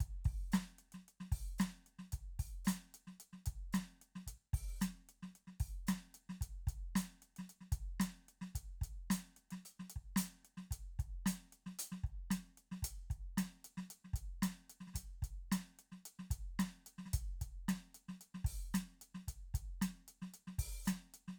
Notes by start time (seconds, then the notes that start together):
0.00 kick, closed hi-hat
0.25 kick, open hi-hat
0.52 snare, closed hi-hat, hi-hat pedal
0.78 closed hi-hat
0.92 snare, closed hi-hat
1.08 closed hi-hat
1.20 snare
1.32 kick, open hi-hat
1.58 snare, closed hi-hat, hi-hat pedal
1.86 closed hi-hat
1.99 snare
2.12 kick, closed hi-hat
2.39 kick, open hi-hat
2.65 closed hi-hat, snare, hi-hat pedal
2.94 closed hi-hat
3.07 snare
3.20 closed hi-hat
3.33 snare
3.46 kick, closed hi-hat
3.73 snare, closed hi-hat, hi-hat pedal
4.01 closed hi-hat
4.15 snare
4.27 kick, closed hi-hat
4.53 kick, open hi-hat
4.81 snare, closed hi-hat, hi-hat pedal
5.09 closed hi-hat
5.22 snare
5.35 closed hi-hat
5.47 snare
5.60 kick, open hi-hat
5.87 snare, closed hi-hat, hi-hat pedal
6.14 closed hi-hat
6.29 snare
6.41 kick, closed hi-hat
6.67 kick, closed hi-hat
6.95 closed hi-hat, snare
7.22 closed hi-hat
7.36 snare, closed hi-hat
7.49 closed hi-hat
7.61 snare
7.72 kick, closed hi-hat
8.00 snare, closed hi-hat
8.28 closed hi-hat
8.41 snare
8.55 kick, closed hi-hat
8.81 kick, closed hi-hat
9.10 closed hi-hat, snare
9.36 closed hi-hat
9.51 snare, closed hi-hat
9.65 closed hi-hat
9.79 snare
9.90 closed hi-hat
9.96 kick
10.16 closed hi-hat, snare
10.45 closed hi-hat
10.57 snare
10.71 kick, closed hi-hat
10.99 kick, closed hi-hat
11.26 closed hi-hat, snare
11.52 closed hi-hat
11.66 snare
11.79 closed hi-hat
11.92 snare
12.03 kick, closed hi-hat
12.30 snare, closed hi-hat
12.57 closed hi-hat
12.71 snare
12.82 kick, closed hi-hat
13.10 kick, closed hi-hat
13.37 snare, closed hi-hat
13.64 closed hi-hat
13.77 snare
13.90 closed hi-hat
14.04 snare
14.13 kick, closed hi-hat
14.42 snare, closed hi-hat
14.70 closed hi-hat
14.80 snare
14.87 snare
14.94 kick, snare, closed hi-hat
15.22 kick, closed hi-hat
15.52 snare, closed hi-hat
15.79 closed hi-hat
15.92 snare
16.05 closed hi-hat
16.19 snare
16.30 kick, closed hi-hat
16.59 snare, closed hi-hat
16.86 closed hi-hat
16.98 snare
17.05 snare
17.13 kick, closed hi-hat
17.41 kick, closed hi-hat
17.68 snare, closed hi-hat
17.94 closed hi-hat
18.08 snare
18.21 closed hi-hat
18.34 snare
18.44 kick, open hi-hat
18.74 snare, closed hi-hat, hi-hat pedal
19.01 closed hi-hat
19.14 snare
19.28 kick, closed hi-hat
19.54 kick, closed hi-hat
19.81 snare, closed hi-hat
20.08 closed hi-hat
20.22 snare
20.34 closed hi-hat
20.47 snare
20.58 kick, open hi-hat
20.85 snare, closed hi-hat, hi-hat pedal
21.14 closed hi-hat
21.28 snare